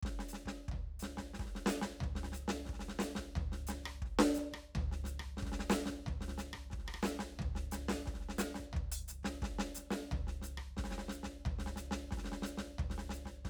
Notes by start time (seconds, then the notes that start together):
0.01 kick, snare
0.19 snare
0.28 hi-hat pedal
0.33 snare
0.45 kick, snare
0.68 kick, floor tom
0.99 snare, hi-hat pedal
1.17 kick, snare
1.33 snare
1.39 kick, snare
1.46 snare
1.55 snare
1.66 snare, hi-hat pedal
1.81 kick, snare
2.00 kick, floor tom
2.15 snare
2.23 snare
2.32 snare, hi-hat pedal
2.48 kick, snare
2.65 kick, snare
2.73 snare
2.79 snare
2.88 snare
2.99 snare, hi-hat pedal
3.15 kick, snare
3.35 kick, floor tom
3.52 snare
3.67 snare, hi-hat pedal
3.83 kick, cross-stick
4.02 kick, snare
4.19 snare
4.34 snare, hi-hat pedal
4.52 kick, cross-stick
4.75 kick, floor tom
4.91 snare
5.04 snare, hi-hat pedal
5.19 kick, cross-stick
5.37 snare
5.42 kick, snare
5.52 snare
5.59 snare
5.70 snare, hi-hat pedal
5.85 kick, snare
6.06 kick, floor tom
6.21 snare
6.28 snare
6.38 snare, hi-hat pedal
6.53 kick, cross-stick
6.70 kick, snare
6.78 snare
6.85 cross-stick, snare
6.94 cross-stick
6.97 cross-stick
7.03 snare, hi-hat pedal
7.19 kick, snare
7.39 kick, floor tom
7.55 snare
7.71 snare, hi-hat pedal
7.88 kick, snare
8.06 kick, snare
8.14 snare
8.20 snare
8.29 snare
8.38 snare, hi-hat pedal
8.54 snare
8.59 kick
8.73 kick, floor tom
8.92 closed hi-hat
9.08 snare, hi-hat pedal
9.23 kick, snare
9.42 kick, snare
9.58 snare
9.75 snare, hi-hat pedal
9.90 kick, snare
10.11 kick, floor tom
10.27 snare
10.41 snare, hi-hat pedal
10.57 kick, cross-stick
10.77 kick, snare
10.84 snare
10.89 snare
10.91 snare
10.98 snare
11.08 snare, hi-hat pedal
11.23 kick, snare
11.45 kick, floor tom
11.58 snare
11.66 snare
11.76 snare, hi-hat pedal
11.91 kick, snare
12.11 kick, snare
12.17 snare
12.23 snare
12.32 snare
12.42 snare, hi-hat pedal
12.57 kick, snare
12.78 kick, floor tom
12.90 snare
12.98 snare
13.09 snare, hi-hat pedal
13.25 kick, snare
13.45 kick, snare